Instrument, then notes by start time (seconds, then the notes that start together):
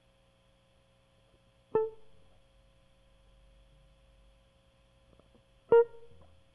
electric guitar
1.76 A4
5.72 A#4